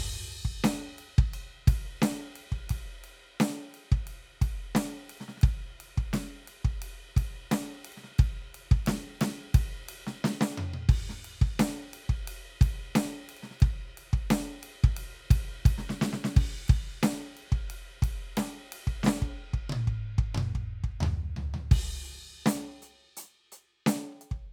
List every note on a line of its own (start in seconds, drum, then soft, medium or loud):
0.46 kick medium
0.65 snare loud
0.65 ride bell loud
0.99 ride medium
1.19 kick loud
1.34 ride bell medium
1.68 kick loud
1.68 ride loud
2.03 snare loud
2.03 ride loud
2.37 ride medium
2.53 kick medium
2.70 kick medium
2.70 ride loud
3.05 ride medium
3.41 snare loud
3.41 hi-hat pedal soft
3.41 ride loud
3.75 ride medium
3.92 kick loud
3.92 snare soft
4.08 ride medium
4.42 kick loud
4.42 ride loud
4.76 snare loud
4.76 ride loud
5.10 ride medium
5.18 snare soft
5.18 ride soft
5.29 snare soft
5.37 snare soft
5.42 kick loud
5.42 ride medium
5.81 ride medium
5.98 kick medium
6.14 snare loud
6.14 ride loud
6.48 ride medium
6.65 kick medium
6.83 ride loud
7.17 kick loud
7.17 ride loud
7.52 snare loud
7.52 ride loud
7.86 ride loud
7.93 ride medium
7.97 snare soft
8.04 snare soft
8.12 snare soft
8.19 kick loud
8.19 ride medium
8.55 ride medium
8.72 kick loud
8.87 snare loud
8.87 ride loud
9.22 snare loud
9.22 ride loud
9.55 kick loud
9.55 ride loud
9.89 ride loud
10.08 snare medium
10.25 snare loud
10.42 snare loud
10.58 mid tom loud
10.74 high tom medium
10.90 kick loud
10.90 crash medium
11.10 snare soft
11.25 ride medium
11.42 kick loud
11.60 snare loud
11.60 ride loud
11.94 ride loud
12.10 kick medium
12.28 ride loud
12.62 kick loud
12.62 ride loud
12.96 snare loud
12.96 ride loud
13.30 ride medium
13.37 ride medium
13.43 snare soft
13.51 snare soft
13.61 kick loud
13.61 ride medium
13.98 ride medium
14.14 kick medium
14.31 snare loud
14.31 ride loud
14.64 ride loud
14.85 kick loud
14.97 ride loud
15.31 kick loud
15.31 ride loud
15.66 kick loud
15.66 ride loud
15.79 snare medium
15.90 snare medium
16.02 snare loud
16.14 snare medium
16.25 snare loud
16.37 kick loud
16.37 crash medium
16.69 kick loud
16.69 ride medium
17.04 snare loud
17.04 ride loud
17.38 ride medium
17.53 kick medium
17.53 snare soft
17.71 ride loud
18.03 kick loud
18.03 ride loud
18.38 snare loud
18.38 ride loud
18.73 ride loud
18.88 kick medium
19.04 snare loud
19.07 snare loud
19.23 kick medium
19.54 kick medium
19.54 snare soft
19.70 high tom loud
19.73 high tom loud
19.88 kick medium
20.19 kick loud
20.19 snare soft
20.35 mid tom loud
20.35 high tom loud
20.56 kick medium
20.85 kick medium
21.01 floor tom loud
21.01 mid tom loud
21.37 floor tom medium
21.55 floor tom medium
21.72 kick loud
21.72 crash loud
22.04 open hi-hat soft
22.47 closed hi-hat loud
22.47 snare loud
22.83 closed hi-hat medium
23.18 closed hi-hat loud
23.53 closed hi-hat medium
23.87 closed hi-hat loud
23.87 snare loud
24.22 closed hi-hat medium
24.32 kick medium